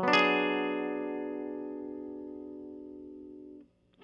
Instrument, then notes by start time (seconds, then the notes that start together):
electric guitar
0.00 F#3
0.04 B3
0.09 D4
0.14 G#4